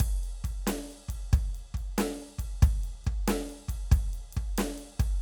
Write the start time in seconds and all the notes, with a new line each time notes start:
0.00 kick, ride
0.23 ride
0.44 kick, ride
0.67 snare, ride
0.90 ride
1.08 kick, ride
1.33 kick, ride
1.55 ride
1.74 kick, ride
1.98 snare, ride
2.38 kick, ride
2.62 kick, ride
2.84 ride
3.04 kick, ride
3.28 snare, ride
3.49 ride
3.68 kick, ride
3.91 kick, ride
4.13 ride
4.33 kick, ride
4.58 snare, ride
4.78 ride
4.99 kick, ride